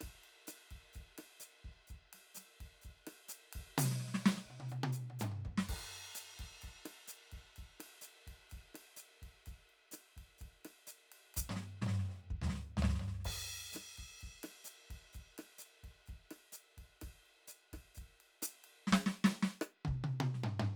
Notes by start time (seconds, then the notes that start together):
0.01 kick, cross-stick, snare, hi-hat pedal, ride
0.09 kick
0.24 ride
0.48 cross-stick, hi-hat pedal, ride
0.71 kick, ride
0.94 kick, hi-hat pedal, ride
1.01 kick
1.19 cross-stick, ride
1.40 hi-hat pedal
1.65 kick, ride
1.70 kick
1.88 kick, hi-hat pedal
2.14 snare, ride
2.35 snare, hi-hat pedal, ride
2.61 kick, ride
2.82 kick, hi-hat pedal, ride
3.07 cross-stick, snare, ride
3.29 hi-hat pedal, ride
3.53 kick, ride
3.79 hi-hat pedal, high tom
3.85 snare
3.92 snare
4.00 snare
4.08 snare
4.15 snare
4.26 snare
4.38 snare
4.45 kick
4.51 high tom
4.61 high tom
4.69 hi-hat pedal, high tom
4.84 high tom
4.93 hi-hat pedal
5.11 high tom
5.20 hi-hat pedal, mid tom
5.32 high tom
5.46 kick, mid tom
5.51 kick
5.58 snare
5.69 kick, crash
5.76 kick
6.15 hi-hat pedal, ride
6.40 kick, snare, ride
6.62 kick, hi-hat pedal, ride
6.69 kick, snare
6.86 cross-stick, snare, ride
7.08 hi-hat pedal, ride
7.32 kick, ride
7.56 kick, hi-hat pedal, ride
7.64 kick
7.80 cross-stick, snare, ride
8.02 hi-hat pedal
8.06 ride
8.27 kick, ride
8.50 kick, hi-hat pedal, ride
8.58 kick
8.75 cross-stick, ride
8.97 hi-hat pedal, ride
9.23 kick, ride
9.46 kick, hi-hat pedal, ride
9.53 kick
9.70 ride
9.92 cross-stick, hi-hat pedal, ride
10.17 kick, ride
10.39 kick, hi-hat pedal, ride
10.46 kick
10.65 cross-stick, snare, ride
10.88 hi-hat pedal, ride
11.13 ride
11.35 kick, hi-hat pedal, ride
11.44 kick
11.50 snare, mid tom
11.53 snare, mid tom
11.57 mid tom
11.63 snare
11.82 snare, mid tom
11.87 snare, mid tom
11.91 snare, mid tom
11.95 mid tom
11.99 snare, mid tom
12.03 snare, mid tom
12.06 mid tom
12.09 snare, mid tom
12.15 snare
12.31 kick
12.37 kick
12.42 snare, floor tom
12.47 snare, floor tom
12.52 snare, floor tom
12.59 floor tom
12.78 snare, floor tom
12.83 snare, floor tom
12.89 snare, floor tom
12.95 snare, floor tom
13.00 snare, floor tom
13.08 snare
13.14 snare
13.21 snare
13.25 kick, crash
13.32 kick
13.73 cross-stick, snare, hi-hat pedal, ride
13.98 kick, ride
14.19 hi-hat pedal, ride
14.23 kick
14.29 kick
14.44 cross-stick, snare, ride
14.65 hi-hat pedal, ride
14.91 kick, ride
14.96 kick
15.14 kick, hi-hat pedal, ride
15.20 kick
15.39 cross-stick, snare, ride
15.59 hi-hat pedal
15.63 ride
15.84 kick, ride
16.06 kick, hi-hat pedal, ride
16.14 kick
16.31 cross-stick, ride
16.53 hi-hat pedal, ride
16.78 kick, ride
17.01 kick, cross-stick, snare, hi-hat pedal, ride
17.08 kick
17.26 ride
17.48 hi-hat pedal, ride
17.73 kick, cross-stick, snare, ride
17.95 kick, hi-hat pedal, ride
18.03 kick
18.21 ride
18.43 cross-stick, snare, hi-hat pedal, ride
18.65 ride
18.88 kick, snare
18.93 snare
19.07 snare
19.25 snare
19.43 snare
19.62 cross-stick
19.86 kick, high tom
19.95 kick
20.05 high tom
20.21 high tom
20.35 snare
20.44 mid tom
20.60 mid tom